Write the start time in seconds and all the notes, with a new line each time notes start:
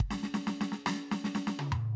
0.00 kick
0.11 snare
0.23 snare
0.34 snare
0.47 snare
0.61 snare
0.72 snare
0.86 snare
1.11 snare
1.24 snare
1.35 snare
1.47 snare
1.59 high tom
1.72 mid tom